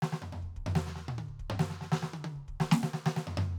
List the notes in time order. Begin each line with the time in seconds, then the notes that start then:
0.02 snare
0.12 snare
0.22 floor tom
0.32 floor tom
0.42 kick
0.56 kick
0.66 floor tom
0.75 snare
0.86 snare
0.95 snare
1.08 mid tom
1.18 high tom
1.28 kick
1.39 kick
1.50 mid tom
1.59 snare
1.70 snare
1.81 snare
1.92 snare
2.02 snare
2.13 high tom
2.24 high tom
2.35 kick
2.48 kick
2.60 snare
2.71 snare
2.83 snare
2.93 snare
3.06 snare
3.16 snare
3.27 floor tom
3.37 floor tom